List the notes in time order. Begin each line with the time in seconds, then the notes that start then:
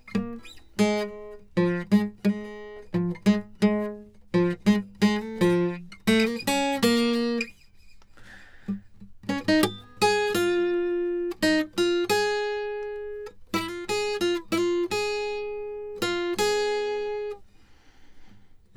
0.16 A#3
0.80 G#3
1.58 F3
1.93 G#3
2.26 G#3
2.96 F3
3.28 G#3
3.64 G#3
4.36 F3
4.68 G#3
5.03 G#3
5.14 G#3
5.43 F3
6.09 A3
6.23 A#3
6.49 C#4
6.84 A#3
9.31 C#4
9.50 D#4
10.03 G#4
10.36 F4
11.44 D#4
11.79 F4
12.11 G#4
13.55 E4
13.70 F4
13.91 G#4
14.23 F4
14.54 F4
14.93 G#4
16.04 F4
16.40 G#4